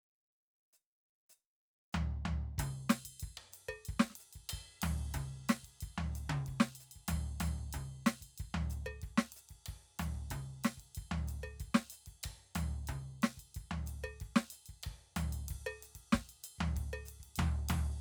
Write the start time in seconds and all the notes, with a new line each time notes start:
0.73 hi-hat pedal
1.29 hi-hat pedal
1.92 floor tom, hi-hat pedal
2.25 floor tom
2.58 kick, mid tom, ride bell
2.78 kick
2.89 snare, hi-hat pedal, ride bell
3.04 kick, ride bell
3.20 kick, ride bell
3.37 floor tom
3.52 hi-hat pedal, ride
3.68 kick, percussion
3.85 kick, ride bell
3.99 snare
4.10 snare
4.15 ride
4.19 hi-hat pedal
4.33 kick, ride bell
4.49 kick, ride bell, floor tom
4.82 floor tom, hi-hat pedal, ride
4.97 kick
5.14 kick, mid tom, ride bell
5.49 snare, hi-hat pedal, ride bell
5.63 kick, ride
5.81 kick, ride bell
5.98 floor tom
6.15 hi-hat pedal, ride
6.29 kick, mid tom
6.46 kick, ride
6.60 snare
6.75 ride bell
6.80 hi-hat pedal
6.91 ride bell
6.96 kick
7.08 floor tom, ride bell
7.12 kick
7.40 floor tom, hi-hat pedal, ride bell
7.58 kick
7.73 kick, mid tom, ride bell
8.06 snare, hi-hat pedal, ride bell
8.21 kick, ride bell
8.38 kick, ride bell
8.54 floor tom
8.70 hi-hat pedal, ride
8.85 kick, percussion
9.02 kick, ride
9.17 snare
9.32 hi-hat pedal, ride
9.49 kick, ride
9.66 kick, ride, floor tom
9.99 floor tom, hi-hat pedal, ride
10.14 kick
10.30 kick, mid tom, ride bell
10.63 snare, hi-hat pedal, ride bell
10.77 kick, ride
10.95 kick, ride bell
11.11 floor tom
11.27 hi-hat pedal, ride
11.42 kick, percussion
11.60 kick, ride bell
11.74 snare
11.90 hi-hat pedal, ride bell
12.06 kick, ride
12.23 kick, ride bell, floor tom
12.55 floor tom, hi-hat pedal, ride bell
12.71 kick
12.87 kick, mid tom, ride bell
13.22 snare, hi-hat pedal, ride
13.37 kick, ride bell
13.54 kick, ride bell
13.71 floor tom
13.86 hi-hat pedal, ride
14.03 kick, percussion
14.20 kick, ride
14.36 snare
14.50 hi-hat pedal, ride bell
14.66 kick, ride bell
14.83 kick, ride, floor tom
15.16 floor tom, hi-hat pedal, ride bell
15.32 kick, ride bell
15.48 kick, ride
15.66 percussion
15.82 hi-hat pedal, ride
15.95 kick, ride
16.12 kick, snare
16.29 ride bell
16.43 hi-hat pedal, ride bell
16.58 kick, floor tom
16.76 kick, ride
16.93 percussion
17.05 hi-hat pedal, ride
17.20 kick, ride
17.36 kick, floor tom, ride bell
17.69 floor tom, hi-hat pedal, ride
17.82 kick